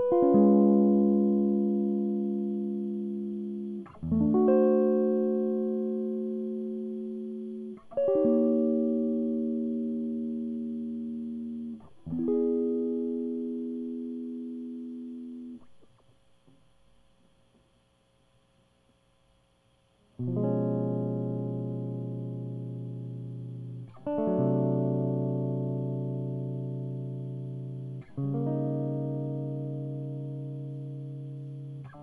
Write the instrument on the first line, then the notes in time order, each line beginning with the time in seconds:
electric guitar
0.00 B4
0.12 F4
0.23 C#4
0.35 G#3
4.12 A3
4.21 D4
4.34 F#4
4.48 C5
7.97 C#5
8.08 G4
8.16 D#4
8.25 A#3
12.11 E2 B3
12.19 E4
12.28 G#4
20.21 B2
20.28 F3
20.37 G#3
20.44 C#4
24.07 D4
24.19 A3
24.28 F#3
24.40 C3
28.19 C#3
28.35 A#3
28.47 D#4
28.57 G3